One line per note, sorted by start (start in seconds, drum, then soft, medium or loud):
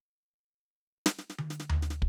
1.06 snare loud
1.19 snare soft
1.30 snare soft
1.39 high tom loud
1.50 snare soft
1.50 hi-hat pedal soft
1.60 snare soft
1.70 floor tom loud
1.82 snare soft
1.90 snare soft
2.02 kick medium